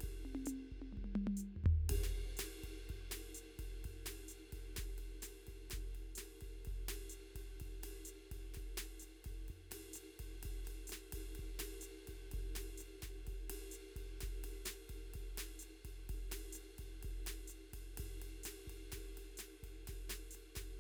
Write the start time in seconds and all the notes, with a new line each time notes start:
0.01 kick, ride
0.09 kick
0.25 high tom
0.35 high tom
0.46 hi-hat pedal, high tom
0.61 high tom
0.72 kick, high tom
0.82 high tom
0.93 mid tom
0.98 kick
1.03 kick, mid tom
1.16 mid tom
1.27 mid tom
1.37 hi-hat pedal
1.57 floor tom
1.64 kick, floor tom
1.70 kick
1.90 kick, ride
1.98 kick
2.04 snare
2.37 snare, hi-hat pedal, ride
2.64 kick, ride
2.89 kick, ride
2.96 kick
3.12 snare, ride
3.35 hi-hat pedal, ride
3.59 kick, ride
3.85 kick, ride
3.91 kick
4.06 snare, ride
4.29 hi-hat pedal, ride
4.53 kick, ride
4.76 kick, snare, ride
4.84 kick
4.98 ride
5.23 snare, hi-hat pedal, ride
5.47 kick, ride
5.70 kick, snare, ride
5.79 kick
5.95 ride
6.16 snare, hi-hat pedal, ride
6.41 kick, ride
6.65 kick, ride
6.73 kick
6.88 snare, ride
7.10 hi-hat pedal, ride
7.36 kick, ride
7.60 kick, ride
7.67 kick
7.83 snare, ride
8.05 hi-hat pedal, ride
8.32 kick, ride
8.37 kick
8.54 kick, snare, ride
8.63 kick
8.78 snare, ride
9.00 hi-hat pedal, ride
9.25 kick, snare, ride
9.31 kick
9.49 kick, ride
9.71 snare, ride
9.94 hi-hat pedal, ride
10.20 kick, ride
10.43 kick, snare, ride
10.51 kick, snare
10.65 snare, ride
10.88 hi-hat pedal, ride
10.92 snare
11.13 kick, ride
11.19 kick
11.35 ride
11.40 kick
11.44 kick
11.59 snare, ride
11.81 hi-hat pedal, ride
12.08 kick, ride
12.32 kick, ride
12.39 kick
12.56 snare, ride
12.78 hi-hat pedal, ride
13.02 kick, snare, ride
13.27 kick, ride
13.33 kick
13.40 snare
13.50 snare, ride
13.72 hi-hat pedal, ride
13.96 kick, ride
14.21 kick, snare, ride
14.29 kick
14.44 snare, ride
14.66 snare, hi-hat pedal, ride
14.90 kick, ride
15.14 kick, ride
15.21 kick
15.38 snare, ride
15.59 hi-hat pedal, ride
15.85 kick, ride
16.10 kick, ride
16.15 kick
16.32 snare, ride
16.53 hi-hat pedal, ride
16.79 kick, ride
16.85 kick
17.03 kick, ride
17.10 kick
17.27 snare, ride
17.48 hi-hat pedal, ride
17.74 kick, ride
17.98 kick, snare, ride
18.05 kick
18.22 ride
18.44 snare, hi-hat pedal, ride
18.68 kick, ride
18.92 kick, snare, ride
18.99 kick
19.18 ride
19.38 snare, hi-hat pedal, ride
19.63 kick, ride
19.88 kick, snare, ride
19.94 kick
20.10 snare, ride
20.31 hi-hat pedal
20.35 ride
20.56 kick, snare, ride
20.62 kick